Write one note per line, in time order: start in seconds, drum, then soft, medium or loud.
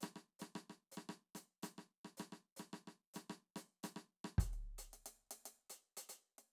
0.01 cross-stick medium
0.01 hi-hat pedal medium
0.16 cross-stick soft
0.40 cross-stick soft
0.40 hi-hat pedal medium
0.56 cross-stick medium
0.70 cross-stick soft
0.92 hi-hat pedal medium
0.97 cross-stick soft
1.09 cross-stick medium
1.35 cross-stick soft
1.35 hi-hat pedal medium
1.63 cross-stick medium
1.63 hi-hat pedal medium
1.78 cross-stick soft
2.05 cross-stick soft
2.17 cross-stick medium
2.17 hi-hat pedal medium
2.33 cross-stick soft
2.57 cross-stick soft
2.57 hi-hat pedal medium
2.73 cross-stick soft
2.88 cross-stick soft
3.14 cross-stick soft
3.14 hi-hat pedal medium
3.30 cross-stick medium
3.56 cross-stick medium
3.56 hi-hat pedal medium
3.84 cross-stick medium
3.84 hi-hat pedal medium
3.96 cross-stick soft
4.25 cross-stick medium
4.39 closed hi-hat medium
4.39 kick medium
4.54 closed hi-hat soft
4.79 closed hi-hat medium
4.94 closed hi-hat medium
5.06 closed hi-hat medium
5.31 closed hi-hat medium
5.46 closed hi-hat medium
5.70 closed hi-hat medium
5.97 closed hi-hat medium
6.09 closed hi-hat medium
6.39 closed hi-hat soft